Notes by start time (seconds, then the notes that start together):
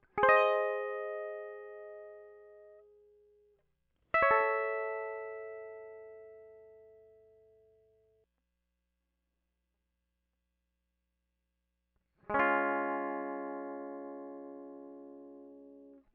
0.18 G#4
0.23 C5
0.29 D#5
4.14 E5 F5
4.23 C#5
4.31 A4
12.30 G#3
12.35 C#4
12.39 F4